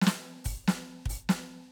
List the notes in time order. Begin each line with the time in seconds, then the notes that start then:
0.02 snare
0.07 snare
0.28 snare
0.45 open hi-hat, kick
0.64 hi-hat pedal
0.68 snare
0.90 snare
1.06 open hi-hat, kick
1.29 snare, hi-hat pedal